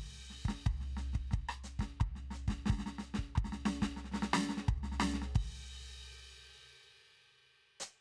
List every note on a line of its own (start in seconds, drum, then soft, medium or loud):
0.30 snare soft
0.45 kick soft
0.45 snare medium
0.66 kick soft
0.66 floor tom medium
0.81 snare soft
0.97 snare soft
0.97 hi-hat pedal soft
1.13 kick soft
1.13 snare soft
1.31 kick soft
1.31 snare soft
1.49 cross-stick medium
1.64 snare soft
1.64 hi-hat pedal medium
1.79 kick soft
1.79 snare soft
2.00 kick soft
2.00 floor tom medium
2.16 snare soft
2.31 snare soft
2.31 hi-hat pedal soft
2.48 kick soft
2.48 snare medium
2.66 kick soft
2.66 snare medium
2.71 snare medium
2.77 snare soft
2.79 snare medium
2.86 snare medium
2.99 snare soft
2.99 hi-hat pedal soft
3.14 snare medium
3.19 kick soft
3.36 kick soft
3.36 floor tom medium
3.45 snare soft
3.53 snare medium
3.66 snare medium
3.70 hi-hat pedal soft
3.82 kick soft
3.82 snare medium
3.97 snare soft
4.05 snare soft
4.12 snare soft
4.14 snare medium
4.23 snare medium
4.34 snare loud
4.49 snare medium
4.58 snare soft
4.69 kick soft
4.69 floor tom medium
4.78 kick soft
4.84 snare soft
4.92 snare soft
5.00 snare loud
5.00 hi-hat pedal soft
5.14 snare soft
5.22 snare soft
5.35 kick medium
5.35 crash medium
7.80 hi-hat pedal medium